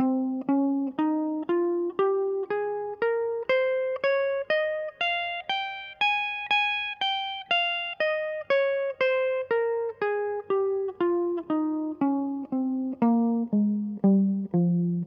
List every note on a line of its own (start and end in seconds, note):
0.00 0.45 C4
0.49 0.93 C#4
0.99 1.46 D#4
1.49 1.93 F4
1.99 2.48 G4
2.51 2.98 G#4
3.02 3.47 A#4
3.50 3.99 C5
4.04 4.46 C#5
4.50 4.92 D#5
5.01 5.44 F5
5.50 5.96 G5
6.02 6.50 G#5
6.51 6.98 G#5
7.02 7.44 G5
7.51 7.97 F5
8.01 8.45 D#5
8.52 8.95 C#5
9.01 9.45 C5
9.51 9.93 A#4
10.02 10.43 G#4
10.51 10.93 G4
11.01 11.44 F4
11.50 11.96 D#4
12.02 12.48 C#4
12.53 12.96 C4
13.03 13.47 A#3
13.54 14.01 G#3
14.05 14.50 G3
14.55 15.06 F3